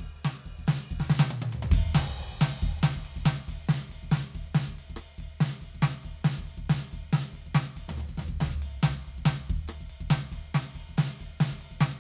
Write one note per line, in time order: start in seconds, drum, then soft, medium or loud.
0.01 kick soft
0.01 percussion medium
0.25 snare medium
0.25 percussion medium
0.46 kick soft
0.46 percussion medium
0.59 kick soft
0.68 snare loud
0.68 percussion loud
0.90 kick medium
0.90 percussion medium
1.01 snare medium
1.10 snare loud
1.20 snare loud
1.31 high tom loud
1.42 high tom loud
1.53 floor tom loud
1.63 floor tom loud
1.72 kick loud
1.72 ride loud
1.95 snare loud
1.95 crash loud
2.20 kick soft
2.31 kick soft
2.42 snare loud
2.42 ride loud
2.55 snare soft
2.63 kick medium
2.63 ride soft
2.84 snare loud
2.84 ride medium
2.97 kick medium
2.97 snare soft
3.06 ride medium
3.17 kick medium
3.26 snare loud
3.26 ride medium
3.48 kick medium
3.48 snare soft
3.48 ride medium
3.69 snare loud
3.69 ride medium
3.90 kick soft
3.90 snare soft
3.90 ride medium
4.04 kick soft
4.12 snare loud
4.12 ride medium
4.34 kick medium
4.34 snare soft
4.34 ride soft
4.55 snare loud
4.55 ride medium
4.69 kick soft
4.69 snare soft
4.79 ride soft
4.90 kick soft
4.97 cross-stick medium
4.97 ride medium
5.19 kick soft
5.19 snare soft
5.19 ride soft
5.41 snare loud
5.41 ride medium
5.55 snare soft
5.62 kick soft
5.62 ride soft
5.75 kick soft
5.83 snare loud
5.83 ride medium
5.98 snare soft
6.04 kick soft
6.04 ride soft
6.25 snare loud
6.25 ride medium
6.39 kick medium
6.39 snare soft
6.48 ride soft
6.58 kick medium
6.70 snare loud
6.70 ride medium
6.89 snare soft
6.89 ride soft
6.94 kick medium
7.13 snare loud
7.13 ride medium
7.29 snare soft
7.34 kick soft
7.34 ride soft
7.47 kick soft
7.55 snare loud
7.55 ride medium
7.77 kick soft
7.77 ride medium
7.89 snare medium
7.89 floor tom loud
7.98 cross-stick medium
7.98 floor tom medium
8.10 kick soft
8.18 snare medium
8.18 floor tom loud
8.29 kick medium
8.41 snare loud
8.41 floor tom loud
8.47 kick medium
8.63 ride medium
8.83 snare loud
8.83 ride medium
9.05 kick soft
9.05 ride soft
9.19 kick soft
9.26 snare loud
9.26 ride medium
9.45 snare soft
9.45 ride soft
9.50 kick medium
9.68 cross-stick medium
9.68 ride medium
9.77 snare soft
9.81 kick soft
9.81 snare soft
9.90 ride medium
10.01 kick medium
10.11 snare loud
10.11 ride medium
10.30 kick medium
10.30 snare soft
10.30 ride medium
10.55 snare loud
10.55 ride medium
10.69 snare soft
10.73 kick soft
10.73 snare soft
10.73 ride medium
10.90 kick soft
10.98 snare loud
10.98 ride medium
11.20 kick soft
11.20 ride medium
11.41 snare loud
11.41 ride medium
11.52 kick soft
11.52 snare soft
11.62 ride medium
11.72 kick soft
11.81 snare loud
11.81 ride medium